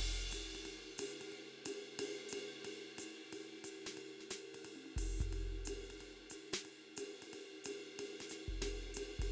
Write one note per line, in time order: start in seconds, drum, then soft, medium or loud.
0.31 hi-hat pedal medium
0.31 ride medium
0.55 ride medium
0.65 ride medium
0.98 hi-hat pedal medium
0.98 ride loud
1.18 hi-hat pedal soft
1.18 ride medium
1.32 ride soft
1.65 hi-hat pedal medium
1.65 ride loud
1.99 ride loud
2.29 hi-hat pedal medium
2.29 ride loud
2.65 ride medium
2.98 hi-hat pedal medium
2.98 ride medium
3.32 ride medium
3.56 snare soft
3.64 hi-hat pedal medium
3.64 ride medium
3.86 snare medium
3.86 ride medium
3.97 ride medium
4.20 snare soft
4.30 snare medium
4.30 hi-hat pedal loud
4.30 ride medium
4.54 ride medium
4.65 ride medium
4.76 high tom soft
4.86 high tom soft
4.96 kick soft
4.96 hi-hat pedal medium
4.96 ride medium
5.20 kick soft
5.20 ride medium
5.32 ride medium
5.65 hi-hat pedal loud
5.65 ride medium
5.84 hi-hat pedal soft
5.90 ride medium
6.00 ride medium
6.30 hi-hat pedal medium
6.30 ride medium
6.53 snare medium
6.53 ride medium
6.65 ride medium
6.96 hi-hat pedal medium
6.96 ride medium
7.22 ride medium
7.33 ride medium
7.64 hi-hat pedal medium
7.64 ride loud
7.99 ride medium
8.20 snare soft
8.20 ride medium
8.29 snare soft
8.29 hi-hat pedal medium
8.29 ride medium
8.48 kick soft
8.62 snare medium
8.62 ride loud
8.94 hi-hat pedal loud
8.94 ride medium
9.19 kick soft
9.19 ride medium